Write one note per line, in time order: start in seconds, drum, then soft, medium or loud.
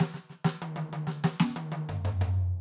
0.00 snare loud
0.14 snare medium
0.29 snare soft
0.44 snare loud
0.62 high tom loud
0.76 high tom loud
0.93 high tom loud
1.07 snare medium
1.24 snare loud
1.40 snare loud
1.56 high tom loud
1.72 high tom loud
1.89 floor tom loud
2.05 floor tom loud
2.21 floor tom loud